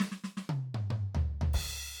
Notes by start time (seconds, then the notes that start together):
0.01 snare
0.11 snare
0.24 snare
0.37 snare
0.49 high tom
0.74 mid tom
0.90 mid tom
1.14 floor tom
1.41 floor tom
1.53 kick, crash